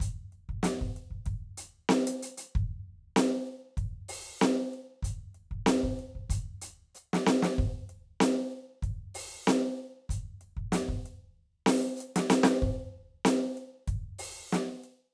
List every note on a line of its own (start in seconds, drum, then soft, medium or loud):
0.01 closed hi-hat loud
0.01 kick medium
0.33 closed hi-hat soft
0.50 kick medium
0.64 closed hi-hat loud
0.64 snare loud
0.82 kick medium
0.97 closed hi-hat soft
1.11 kick soft
1.27 kick medium
1.27 closed hi-hat soft
1.58 closed hi-hat loud
1.90 snare loud
2.08 closed hi-hat loud
2.23 closed hi-hat loud
2.38 closed hi-hat loud
2.56 kick medium
3.17 closed hi-hat loud
3.17 snare loud
3.48 closed hi-hat soft
3.78 kick medium
3.78 closed hi-hat soft
4.09 open hi-hat loud
4.41 snare loud
4.41 closed hi-hat soft
4.41 hi-hat pedal medium
4.74 closed hi-hat soft
5.03 closed hi-hat loud
5.03 kick medium
5.35 closed hi-hat soft
5.52 kick medium
5.67 closed hi-hat loud
5.67 snare loud
5.84 kick medium
6.00 closed hi-hat soft
6.16 kick soft
6.31 closed hi-hat loud
6.31 kick medium
6.63 closed hi-hat loud
6.96 hi-hat pedal medium
7.14 snare loud
7.28 snare loud
7.43 snare loud
7.59 kick medium
7.90 closed hi-hat soft
8.21 closed hi-hat loud
8.21 snare loud
8.53 closed hi-hat soft
8.83 kick medium
8.83 closed hi-hat soft
9.15 open hi-hat loud
9.48 closed hi-hat loud
9.48 snare loud
9.48 hi-hat pedal medium
10.10 closed hi-hat loud
10.10 kick medium
10.42 closed hi-hat soft
10.58 kick medium
10.73 closed hi-hat loud
10.73 snare loud
10.89 kick medium
11.07 closed hi-hat soft
11.67 open hi-hat loud
11.67 snare loud
11.97 hi-hat pedal medium
12.01 closed hi-hat medium
12.17 snare loud
12.17 closed hi-hat loud
12.31 closed hi-hat loud
12.31 snare loud
12.44 closed hi-hat medium
12.44 snare loud
12.63 kick medium
13.26 closed hi-hat loud
13.26 snare loud
13.58 closed hi-hat soft
13.88 kick medium
13.88 closed hi-hat medium
14.19 open hi-hat loud
14.53 closed hi-hat medium
14.53 snare loud
14.53 hi-hat pedal medium
14.84 closed hi-hat soft